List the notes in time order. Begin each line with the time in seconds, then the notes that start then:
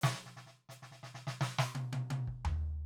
0.01 snare, hi-hat pedal
0.15 snare
0.26 snare
0.36 snare
0.46 snare
0.69 snare, hi-hat pedal
0.82 snare
0.92 snare
1.03 snare
1.14 snare
1.27 snare
1.41 snare
1.58 snare
1.75 high tom
1.93 closed hi-hat, high tom
2.10 high tom
2.28 kick
2.45 floor tom